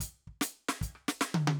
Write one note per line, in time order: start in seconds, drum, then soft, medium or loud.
0.00 closed hi-hat loud
0.00 kick soft
0.27 kick soft
0.41 closed hi-hat loud
0.41 snare loud
0.68 snare loud
0.81 closed hi-hat medium
0.81 kick medium
0.95 cross-stick soft
1.08 snare loud
1.21 snare loud
1.34 high tom loud
1.47 high tom loud